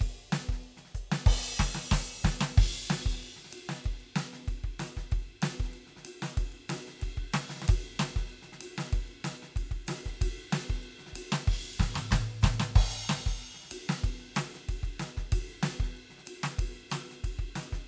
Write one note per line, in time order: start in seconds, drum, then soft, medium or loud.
0.01 kick medium
0.01 crash medium
0.33 snare loud
0.33 hi-hat pedal medium
0.33 crash medium
0.49 kick medium
0.49 snare soft
0.64 crash soft
0.77 snare soft
0.85 snare soft
0.89 snare soft
0.95 kick soft
0.95 hi-hat pedal medium
0.95 crash soft
1.12 snare loud
1.26 kick loud
1.26 hi-hat pedal medium
1.26 crash loud
1.60 open hi-hat loud
1.60 kick medium
1.60 snare loud
1.75 snare medium
1.75 open hi-hat medium
1.92 open hi-hat loud
1.92 kick medium
1.92 snare loud
2.24 kick medium
2.24 snare loud
2.41 snare loud
2.58 kick loud
2.58 ride loud
2.90 snare loud
2.90 hi-hat pedal medium
2.90 ride loud
3.06 kick medium
3.12 snare soft
3.21 ride soft
3.37 snare soft
3.45 snare soft
3.50 hi-hat pedal medium
3.50 ride loud
3.69 snare loud
3.85 kick medium
3.85 ride medium
4.01 ride soft
4.16 snare loud
4.16 hi-hat pedal medium
4.16 ride medium
4.33 snare soft
4.48 kick medium
4.48 ride medium
4.64 kick soft
4.64 crash soft
4.64 ride soft
4.79 snare medium
4.79 hi-hat pedal medium
4.79 ride medium
4.97 kick soft
4.97 snare soft
5.12 kick medium
5.12 ride medium
5.42 snare loud
5.42 hi-hat pedal medium
5.42 ride loud
5.60 kick medium
5.60 snare soft
5.70 snare soft
5.70 ride soft
5.87 snare soft
5.97 kick soft
5.97 snare soft
6.00 snare soft
6.05 hi-hat pedal medium
6.05 ride loud
6.22 snare loud
6.38 kick medium
6.38 ride medium
6.52 ride soft
6.69 snare loud
6.69 hi-hat pedal medium
6.69 ride loud
6.88 snare soft
7.00 kick medium
7.00 snare soft
7.00 ride medium
7.06 snare soft
7.17 kick medium
7.17 ride soft
7.33 snare loud
7.33 hi-hat pedal medium
7.33 ride medium
7.50 snare medium
7.56 snare medium
7.62 snare medium
7.68 kick loud
7.68 ride loud
8.00 snare loud
8.00 hi-hat pedal medium
8.00 ride loud
8.16 kick medium
8.16 snare soft
8.27 snare soft
8.27 ride soft
8.39 kick soft
8.39 snare soft
8.61 hi-hat pedal medium
8.61 ride loud
8.78 snare loud
8.93 kick medium
8.93 ride medium
9.08 ride soft
9.24 snare loud
9.24 hi-hat pedal medium
9.24 ride bell medium
9.43 snare soft
9.56 kick medium
9.56 ride medium
9.71 kick medium
9.71 ride soft
9.87 snare loud
9.87 hi-hat pedal medium
9.87 ride loud
10.06 kick soft
10.06 snare soft
10.22 kick medium
10.22 ride loud
10.53 snare loud
10.53 hi-hat pedal medium
10.53 ride loud
10.70 kick medium
10.70 snare soft
10.84 ride soft
10.99 snare soft
11.07 snare soft
11.13 kick soft
11.13 hi-hat pedal medium
11.13 ride loud
11.32 snare loud
11.48 kick medium
11.48 ride medium
11.80 kick medium
11.80 snare loud
11.80 mid tom loud
11.95 snare loud
11.95 mid tom medium
12.11 kick medium
12.11 cross-stick soft
12.11 snare loud
12.11 hi-hat pedal medium
12.11 mid tom loud
12.42 kick medium
12.42 snare loud
12.42 hi-hat pedal medium
12.42 mid tom loud
12.60 snare loud
12.76 kick loud
12.76 crash loud
13.09 snare loud
13.09 hi-hat pedal medium
13.09 ride medium
13.26 kick medium
13.26 snare soft
13.36 snare soft
13.36 hi-hat pedal soft
13.55 snare soft
13.64 snare soft
13.71 kick soft
13.71 hi-hat pedal medium
13.71 ride loud
13.89 snare loud
14.04 kick medium
14.04 ride medium
14.20 ride soft
14.35 snare loud
14.35 hi-hat pedal medium
14.35 ride loud
14.55 snare soft
14.69 kick medium
14.69 ride medium
14.83 kick medium
14.83 ride soft
15.00 snare loud
15.00 hi-hat pedal medium
15.00 ride medium
15.17 kick soft
15.17 snare soft
15.32 kick medium
15.32 ride loud
15.63 snare loud
15.63 hi-hat pedal medium
15.63 ride loud
15.80 kick medium
15.80 snare soft
15.97 ride soft
16.10 snare soft
16.18 snare soft
16.22 snare soft
16.22 hi-hat pedal medium
16.28 ride loud
16.44 snare loud
16.59 kick medium
16.59 ride loud
16.74 ride soft
16.90 snare loud
16.90 hi-hat pedal medium
16.90 ride loud
17.11 snare soft
17.24 kick medium
17.24 ride medium
17.39 kick medium
17.39 ride soft
17.55 snare medium
17.55 hi-hat pedal medium
17.55 ride medium
17.73 kick soft
17.73 snare soft